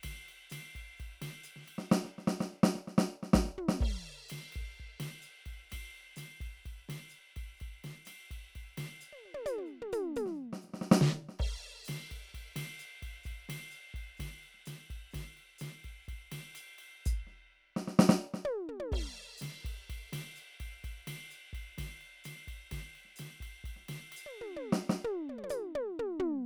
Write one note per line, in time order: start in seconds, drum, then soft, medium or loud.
0.01 kick soft
0.01 snare soft
0.01 hi-hat pedal soft
0.01 ride bell medium
0.28 ride soft
0.50 snare soft
0.50 hi-hat pedal medium
0.50 ride medium
0.75 kick soft
0.75 ride soft
0.97 kick soft
0.97 hi-hat pedal soft
0.97 ride soft
1.21 snare soft
1.21 ride medium
1.44 hi-hat pedal medium
1.44 ride soft
1.56 snare soft
1.64 hi-hat pedal soft
1.64 ride soft
1.78 snare soft
1.91 snare loud
1.91 hi-hat pedal medium
2.05 snare soft
2.18 snare soft
2.27 snare medium
2.40 snare medium
2.53 snare soft
2.63 snare loud
2.75 snare soft
2.88 snare soft
2.98 snare loud
3.23 snare soft
3.33 kick soft
3.33 snare loud
3.40 kick soft
3.45 snare soft
3.57 floor tom medium
3.69 snare medium
3.81 kick soft
3.81 crash medium
3.92 kick soft
4.28 snare soft
4.28 hi-hat pedal medium
4.28 ride medium
4.52 kick soft
4.52 ride soft
4.61 kick soft
4.74 hi-hat pedal soft
4.74 ride soft
4.80 kick soft
5.00 snare soft
5.00 ride medium
5.22 hi-hat pedal medium
5.22 ride soft
5.46 kick soft
5.46 ride soft
5.70 kick soft
5.70 snare soft
5.70 hi-hat pedal soft
5.70 ride medium
5.94 ride soft
6.16 snare soft
6.16 hi-hat pedal medium
6.16 ride medium
6.40 kick soft
6.40 ride soft
6.45 kick soft
6.62 kick soft
6.62 hi-hat pedal soft
6.62 ride soft
6.89 snare soft
6.89 ride medium
7.10 hi-hat pedal medium
7.14 ride soft
7.36 kick soft
7.36 ride soft
7.57 hi-hat pedal soft
7.57 ride soft
7.61 kick soft
7.84 snare soft
7.84 ride soft
8.05 snare soft
8.05 hi-hat pedal medium
8.05 ride medium
8.31 kick soft
8.31 ride soft
8.55 kick soft
8.55 ride soft
8.77 snare soft
8.77 ride medium
9.01 hi-hat pedal medium
9.12 high tom soft
9.25 high tom soft
9.34 high tom medium
9.45 hi-hat pedal medium
9.45 high tom loud
9.58 high tom soft
9.66 hi-hat pedal soft
9.81 mid tom medium
9.92 hi-hat pedal medium
9.92 mid tom loud
10.16 hi-hat pedal medium
10.16 mid tom loud
10.26 snare soft
10.34 hi-hat pedal soft
10.53 snare soft
10.62 snare soft
10.62 hi-hat pedal soft
10.69 snare soft
10.73 snare soft
10.81 snare soft
10.92 snare loud
10.92 hi-hat pedal medium
11.01 snare loud
11.12 snare soft
11.29 snare soft
11.39 kick soft
11.39 crash medium
11.46 kick soft
11.85 snare soft
11.85 hi-hat pedal medium
11.85 ride medium
11.89 snare soft
12.11 kick soft
12.11 ride soft
12.34 kick soft
12.34 ride soft
12.56 snare soft
12.56 ride medium
12.79 hi-hat pedal medium
12.79 ride soft
13.02 kick soft
13.02 ride soft
13.23 kick soft
13.23 hi-hat pedal soft
13.23 ride soft
13.30 kick soft
13.49 snare soft
13.49 ride medium
13.71 hi-hat pedal medium
13.71 ride soft
13.94 kick soft
13.94 ride soft
14.17 kick soft
14.17 snare soft
14.17 hi-hat pedal soft
14.17 ride medium
14.43 ride soft
14.54 snare soft
14.66 snare soft
14.66 hi-hat pedal medium
14.66 ride medium
14.90 kick soft
14.90 ride soft
15.11 kick soft
15.11 snare soft
15.11 hi-hat pedal soft
15.11 ride medium
15.37 ride soft
15.58 snare soft
15.58 hi-hat pedal medium
15.58 ride medium
15.84 kick soft
15.84 ride soft
16.04 hi-hat pedal soft
16.08 kick soft
16.08 ride soft
16.13 kick soft
16.32 snare soft
16.32 ride medium
16.55 hi-hat pedal medium
16.55 ride medium
16.78 ride soft
17.06 kick soft
17.06 hi-hat pedal loud
17.13 kick soft
17.27 snare soft
17.76 snare medium
17.88 snare soft
17.99 snare loud
18.34 snare soft
18.45 high tom loud
18.68 mid tom medium
18.79 high tom medium
18.92 kick soft
18.92 crash medium
18.98 kick soft
19.38 snare soft
19.38 hi-hat pedal medium
19.42 snare soft
19.42 ride medium
19.65 kick soft
19.65 ride soft
19.90 kick soft
19.90 ride medium
20.12 snare soft
20.12 ride medium
20.36 hi-hat pedal medium
20.36 ride soft
20.60 kick soft
20.60 ride soft
20.83 kick soft
20.83 hi-hat pedal soft
20.83 ride soft
21.07 snare soft
21.07 ride medium
21.31 hi-hat pedal medium
21.31 ride soft
21.53 kick soft
21.53 ride soft
21.77 kick soft
21.77 snare soft
21.77 ride medium
22.01 ride soft
22.24 snare soft
22.24 hi-hat pedal medium
22.24 ride medium
22.48 kick soft
22.48 ride soft
22.71 kick soft
22.71 snare soft
22.71 ride medium
22.95 ride soft
23.05 snare soft
23.16 snare soft
23.16 hi-hat pedal medium
23.16 ride medium
23.40 kick soft
23.40 ride soft
23.64 kick soft
23.64 ride soft
23.69 kick soft
23.76 snare soft
23.88 snare soft
23.88 ride medium
24.12 ride medium
24.16 hi-hat pedal medium
24.26 high tom soft
24.41 mid tom medium
24.56 high tom medium
24.73 snare medium
24.89 snare medium
25.04 mid tom loud
25.29 high tom soft
25.38 high tom soft
25.43 high tom medium
25.50 hi-hat pedal loud
25.50 high tom medium
25.75 high tom loud
25.99 mid tom loud
26.19 floor tom loud